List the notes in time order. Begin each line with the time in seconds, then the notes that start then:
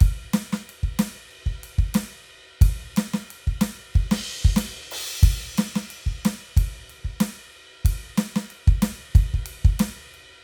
0.01 kick, ride
0.34 snare, ride
0.53 snare
0.70 ride
0.83 kick
0.99 snare, ride
1.31 ride
1.46 kick
1.64 ride
1.79 kick
1.95 snare, ride
2.62 kick, ride
2.97 snare, ride
3.14 snare
3.31 ride
3.47 kick
3.61 snare, ride
3.95 kick, ride
4.12 snare, ride
4.45 kick
4.57 snare, ride
4.91 crash
5.23 kick, ride
5.58 snare, ride
5.76 snare
5.91 ride
6.07 kick
6.25 snare, ride
6.57 kick, ride
6.90 ride
7.05 kick
7.21 snare, ride
7.54 ride
7.85 kick, ride
8.18 snare, ride
8.36 snare
8.51 ride
8.68 kick
8.82 snare, ride
9.15 kick, ride
9.34 kick
9.46 ride
9.65 kick
9.80 snare, ride
10.14 ride